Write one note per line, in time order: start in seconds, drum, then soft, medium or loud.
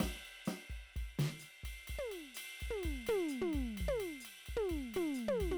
0.01 kick soft
0.01 snare medium
0.01 ride medium
0.09 kick soft
0.17 snare soft
0.26 ride soft
0.46 snare soft
0.46 hi-hat pedal medium
0.46 ride medium
0.71 kick soft
0.71 ride soft
0.94 kick soft
0.94 hi-hat pedal soft
0.94 ride soft
1.02 kick soft
1.20 snare medium
1.20 ride medium
1.40 hi-hat pedal medium
1.40 ride soft
1.64 kick soft
1.64 ride medium
1.84 hi-hat pedal soft
1.84 ride medium
1.90 kick soft
1.95 kick soft
1.99 high tom medium
2.12 ride soft
2.35 hi-hat pedal medium
2.35 ride medium
2.61 kick soft
2.61 ride soft
2.68 kick soft
2.68 mid tom medium
2.81 hi-hat pedal soft
2.81 ride medium
2.86 kick soft
3.07 mid tom loud
3.07 ride medium
3.29 hi-hat pedal medium
3.29 ride soft
3.42 floor tom medium
3.54 kick soft
3.54 ride soft
3.61 kick soft
3.78 kick soft
3.78 ride medium
3.87 kick soft
3.87 high tom loud
4.01 ride medium
4.21 hi-hat pedal medium
4.26 ride medium
4.47 kick soft
4.47 ride soft
4.57 mid tom loud
4.65 hi-hat pedal soft
4.70 kick soft
4.70 ride soft
4.77 kick soft
4.95 floor tom medium
4.95 ride medium
5.15 hi-hat pedal medium
5.20 ride soft
5.29 high tom loud
5.41 kick soft
5.41 ride medium
5.47 kick soft
5.52 floor tom medium